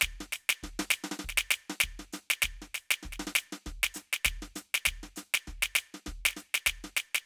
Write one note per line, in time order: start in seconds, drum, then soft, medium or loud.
0.01 kick soft
0.01 snare loud
0.20 snare soft
0.32 snare medium
0.32 hi-hat pedal medium
0.49 snare loud
0.63 kick soft
0.63 snare soft
0.79 snare medium
0.90 snare loud
0.90 hi-hat pedal medium
1.04 snare medium
1.11 snare medium
1.19 snare medium
1.24 kick soft
1.29 snare medium
1.37 snare loud
1.51 snare loud
1.51 hi-hat pedal medium
1.70 snare medium
1.80 kick soft
1.80 snare loud
1.99 snare soft
2.13 snare medium
2.13 hi-hat pedal medium
2.30 snare loud
2.42 kick soft
2.42 snare loud
2.62 snare soft
2.74 snare medium
2.74 hi-hat pedal medium
2.91 snare loud
3.03 kick soft
3.03 snare soft
3.12 snare soft
3.19 snare medium
3.27 snare medium
3.35 snare loud
3.35 hi-hat pedal medium
3.52 snare medium
3.66 kick soft
3.66 snare soft
3.83 snare loud
3.94 snare soft
3.94 hi-hat pedal medium
4.13 snare medium
4.25 kick soft
4.25 snare loud
4.42 snare soft
4.55 snare soft
4.55 hi-hat pedal medium
4.74 snare loud
4.85 kick soft
4.85 snare loud
5.03 snare soft
5.16 snare soft
5.16 hi-hat pedal medium
5.34 snare loud
5.47 kick soft
5.47 snare soft
5.62 snare loud
5.75 snare loud
5.75 hi-hat pedal medium
5.94 snare soft
6.06 kick soft
6.06 snare soft
6.25 snare loud
6.30 snare soft
6.36 snare soft
6.36 hi-hat pedal medium
6.54 snare loud
6.66 kick soft
6.66 snare loud
6.84 snare soft
6.96 snare loud
6.96 hi-hat pedal medium
7.15 snare loud